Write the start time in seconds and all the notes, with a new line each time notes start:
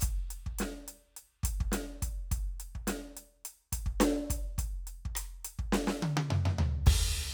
0.01 kick, closed hi-hat, hi-hat pedal
0.31 closed hi-hat
0.47 kick
0.59 snare, closed hi-hat
0.88 closed hi-hat
1.17 closed hi-hat
1.44 kick, closed hi-hat
1.61 kick
1.72 snare, closed hi-hat
2.03 kick, closed hi-hat
2.32 kick, closed hi-hat
2.60 closed hi-hat
2.75 kick
2.88 snare, closed hi-hat
3.17 closed hi-hat
3.45 closed hi-hat
3.73 kick, closed hi-hat
3.86 kick
4.01 snare, closed hi-hat
4.30 kick, closed hi-hat
4.58 kick, closed hi-hat
4.87 closed hi-hat
5.06 kick
5.16 cross-stick, closed hi-hat
5.45 closed hi-hat
5.59 kick
5.73 snare
5.88 snare
6.03 high tom
6.17 high tom
6.31 mid tom
6.46 mid tom
6.59 floor tom
6.87 kick, crash, ride